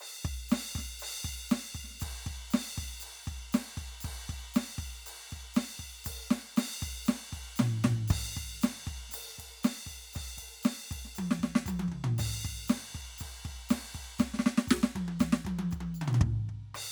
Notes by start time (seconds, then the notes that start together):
0.00 crash
0.25 kick
0.49 snare, crash, percussion
0.74 kick, snare, percussion
0.99 crash, percussion
1.25 kick, crash
1.49 snare, crash, percussion
1.75 kick, crash
1.84 snare
1.90 snare
1.95 snare
2.00 kick, crash, percussion
2.21 percussion
2.26 kick, crash
2.51 snare, crash, percussion
2.74 kick, percussion, crash
2.83 snare
2.86 snare
2.93 snare
3.00 crash, percussion
3.23 percussion
3.27 kick, crash
3.53 snare, crash, percussion
3.77 kick, crash
4.01 kick, percussion
4.05 crash
4.29 kick, crash
4.54 snare, crash, percussion
4.78 kick
4.83 crash
5.06 crash, percussion
5.31 kick, crash
5.54 snare, crash, percussion
5.79 kick, crash
6.04 kick, percussion, crash
6.31 snare, crash
6.57 snare, crash, percussion
6.82 kick, crash
7.06 snare, percussion
7.10 crash
7.33 kick, crash
7.56 snare, floor tom, percussion
7.84 kick, snare, floor tom
8.08 kick, crash, percussion
8.37 kick
8.61 snare, crash, percussion
8.87 kick, crash
9.09 snare, percussion
9.14 crash
9.39 kick, crash
9.64 snare, crash, percussion
9.87 kick, crash
10.13 kick, crash, percussion
10.38 kick, crash
10.63 snare, crash, percussion
10.91 kick, crash
11.05 snare
11.15 kick, high tom, percussion
11.31 snare
11.40 kick, snare
11.56 snare
11.66 kick, high tom, percussion
11.80 high tom
11.88 kick, mid tom
12.04 floor tom
12.18 kick, crash, percussion
12.45 kick, crash
12.68 snare, crash, percussion
12.95 kick, crash
13.18 kick, crash, percussion
13.45 kick, crash
13.69 kick, snare, crash, percussion
13.94 kick, crash
14.19 kick, snare, percussion
14.34 snare
14.39 snare
14.46 snare
14.58 snare
14.68 kick, snare, percussion
14.83 snare
14.95 kick, high tom
15.08 high tom
15.20 kick, snare, percussion
15.33 snare
15.45 kick, high tom
15.59 high tom
15.71 kick, high tom, percussion
15.81 high tom
15.87 kick
15.94 percussion
16.01 mid tom
16.08 floor tom
16.13 floor tom, ride
16.21 kick
16.49 kick
16.75 cross-stick, crash